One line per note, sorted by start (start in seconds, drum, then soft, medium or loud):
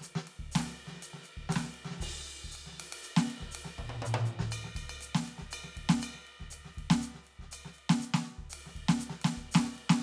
0.01 snare soft
0.01 hi-hat pedal loud
0.01 ride medium
0.16 snare medium
0.28 ride medium
0.40 kick soft
0.45 kick soft
0.52 snare loud
0.52 hi-hat pedal medium
0.56 ride loud
0.61 cross-stick medium
0.64 cross-stick soft
0.64 snare soft
0.71 snare soft
0.88 snare soft
0.92 snare soft
0.96 snare soft
1.03 hi-hat pedal loud
1.03 ride medium
1.14 snare soft
1.19 snare soft
1.24 hi-hat pedal medium
1.24 ride soft
1.38 kick soft
1.50 snare medium
1.50 hi-hat pedal medium
1.50 ride loud
1.56 cross-stick soft
1.56 snare medium
1.64 snare soft
1.75 ride soft
1.85 snare medium
1.91 snare medium
1.97 kick medium
1.97 snare soft
2.02 hi-hat pedal medium
2.02 crash medium
2.07 kick soft
2.13 snare soft
2.19 snare soft
2.45 kick soft
2.52 hi-hat pedal medium
2.52 ride medium
2.67 snare soft
2.73 snare soft
2.77 snare soft
2.80 snare soft
2.80 ride loud
2.82 snare soft
2.93 ride loud
3.03 hi-hat pedal medium
3.03 ride bell medium
3.17 snare loud
3.23 cross-stick soft
3.23 hi-hat pedal soft
3.31 ride medium
3.40 kick soft
3.40 snare soft
3.52 hi-hat pedal medium
3.52 ride loud
3.65 snare soft
3.79 kick soft
3.79 mid tom medium
3.90 mid tom medium
4.03 hi-hat pedal loud
4.03 mid tom loud
4.15 mid tom loud
4.26 hi-hat pedal medium
4.26 mid tom medium
4.40 kick soft
4.40 snare medium
4.52 hi-hat pedal loud
4.52 ride bell loud
4.65 snare soft
4.74 kick medium
4.74 hi-hat pedal soft
4.74 ride bell medium
4.82 kick soft
4.90 ride bell loud
5.02 hi-hat pedal loud
5.02 ride medium
5.15 snare loud
5.24 hi-hat pedal soft
5.28 ride medium
5.39 kick soft
5.39 snare soft
5.51 hi-hat pedal medium
5.51 ride bell loud
5.64 snare soft
5.73 kick soft
5.73 hi-hat pedal soft
5.78 ride medium
5.90 snare loud
6.02 hi-hat pedal loud
6.02 ride bell loud
6.15 snare soft
6.23 hi-hat pedal soft
6.27 ride soft
6.40 kick soft
6.40 snare soft
6.51 hi-hat pedal loud
6.51 ride medium
6.51 floor tom soft
6.65 snare soft
6.73 hi-hat pedal soft
6.78 kick soft
6.78 ride soft
6.84 kick soft
6.91 snare loud
7.02 hi-hat pedal loud
7.02 ride soft
7.15 snare soft
7.24 hi-hat pedal soft
7.24 ride soft
7.40 kick soft
7.40 snare soft
7.52 hi-hat pedal loud
7.52 ride bell medium
7.66 snare soft
7.74 hi-hat pedal soft
7.79 ride soft
7.90 snare loud
8.02 hi-hat pedal medium
8.14 snare loud
8.22 hi-hat pedal soft
8.39 kick soft
8.50 hi-hat pedal loud
8.50 ride loud
8.67 snare soft
8.71 hi-hat pedal soft
8.76 kick soft
8.76 ride soft
8.89 snare loud
9.00 hi-hat pedal loud
9.00 ride medium
9.10 snare medium
9.22 snare loud
9.22 hi-hat pedal soft
9.22 ride medium
9.38 kick soft
9.52 snare loud
9.52 hi-hat pedal loud
9.52 ride loud
9.65 snare soft
9.74 hi-hat pedal soft
9.79 ride soft
9.90 snare loud